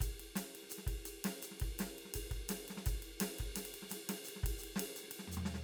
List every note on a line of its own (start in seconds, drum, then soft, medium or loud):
0.01 kick soft
0.01 hi-hat pedal medium
0.01 ride medium
0.20 ride medium
0.36 snare medium
0.36 hi-hat pedal medium
0.36 ride medium
0.56 ride medium
0.63 snare soft
0.70 hi-hat pedal medium
0.70 ride medium
0.78 snare soft
0.87 kick soft
0.87 ride medium
1.06 hi-hat pedal medium
1.06 ride medium
1.25 snare medium
1.25 ride loud
1.43 hi-hat pedal medium
1.43 ride medium
1.52 snare soft
1.61 kick soft
1.61 ride medium
1.79 snare medium
1.79 hi-hat pedal medium
1.79 ride medium
1.99 ride soft
2.06 snare soft
2.15 kick soft
2.15 hi-hat pedal medium
2.15 ride loud
2.31 kick soft
2.31 ride soft
2.49 snare medium
2.49 hi-hat pedal medium
2.49 ride loud
2.69 snare soft
2.69 ride medium
2.78 snare soft
2.86 kick soft
2.86 hi-hat pedal medium
2.86 ride medium
3.03 ride medium
3.20 snare medium
3.20 hi-hat pedal medium
3.20 ride loud
3.39 kick soft
3.39 ride medium
3.56 snare soft
3.56 hi-hat pedal medium
3.56 ride loud
3.66 ride medium
3.75 ride medium
3.83 snare soft
3.90 snare soft
3.90 hi-hat pedal medium
3.90 ride medium
4.10 snare medium
4.10 ride loud
4.25 hi-hat pedal medium
4.29 ride medium
4.36 snare soft
4.44 kick soft
4.44 ride medium
4.59 hi-hat pedal medium
4.64 ride medium
4.76 snare medium
4.76 ride loud
4.96 hi-hat pedal medium
4.96 ride medium
5.04 snare soft
5.12 ride medium
5.20 snare soft
5.28 floor tom medium
5.32 hi-hat pedal medium
5.37 floor tom medium
5.46 snare medium
5.55 snare soft